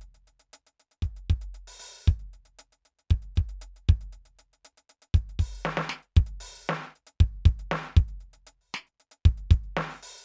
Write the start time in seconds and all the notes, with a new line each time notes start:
0.01 closed hi-hat
0.14 closed hi-hat
0.27 closed hi-hat
0.40 closed hi-hat
0.53 closed hi-hat
0.67 closed hi-hat
0.80 closed hi-hat
0.91 closed hi-hat
1.02 kick, closed hi-hat
1.16 closed hi-hat
1.30 kick, closed hi-hat
1.41 closed hi-hat
1.54 closed hi-hat
1.67 open hi-hat
1.79 open hi-hat
1.96 open hi-hat
2.06 kick, closed hi-hat, hi-hat pedal
2.19 closed hi-hat
2.33 closed hi-hat
2.45 closed hi-hat
2.59 closed hi-hat
2.72 closed hi-hat
2.85 closed hi-hat
2.99 closed hi-hat
3.10 kick, closed hi-hat
3.22 closed hi-hat
3.36 kick, closed hi-hat
3.49 closed hi-hat
3.61 closed hi-hat
3.76 closed hi-hat
3.88 kick, closed hi-hat
4.01 closed hi-hat
4.13 closed hi-hat
4.25 closed hi-hat
4.39 closed hi-hat
4.53 closed hi-hat
4.65 closed hi-hat
4.77 closed hi-hat
4.89 closed hi-hat
5.02 closed hi-hat
5.14 kick, closed hi-hat
5.29 closed hi-hat
5.39 open hi-hat, kick
5.53 open hi-hat
5.63 snare, hi-hat pedal
5.77 snare
5.89 snare
6.02 closed hi-hat
6.16 kick, closed hi-hat
6.26 closed hi-hat
6.40 open hi-hat
6.54 open hi-hat
6.67 snare, hi-hat pedal
6.83 closed hi-hat
6.95 closed hi-hat
7.07 closed hi-hat
7.20 kick, closed hi-hat
7.35 closed hi-hat
7.45 kick, closed hi-hat
7.59 closed hi-hat
7.71 snare
7.83 closed hi-hat
7.97 closed hi-hat, kick
8.08 closed hi-hat
8.20 closed hi-hat
8.33 closed hi-hat
8.47 open hi-hat
8.61 open hi-hat
8.73 snare, hi-hat pedal
8.87 closed hi-hat
9.00 closed hi-hat
9.11 closed hi-hat
9.25 kick, closed hi-hat
9.37 closed hi-hat
9.51 closed hi-hat, kick
9.63 closed hi-hat
9.77 snare
9.90 open hi-hat
10.03 open hi-hat
10.17 open hi-hat